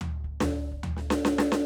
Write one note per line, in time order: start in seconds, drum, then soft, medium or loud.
0.01 floor tom loud
0.24 kick soft
0.40 snare loud
0.40 floor tom loud
0.49 snare soft
0.71 kick soft
0.83 floor tom loud
0.97 snare medium
1.10 snare loud
1.25 snare loud
1.38 snare loud
1.52 snare loud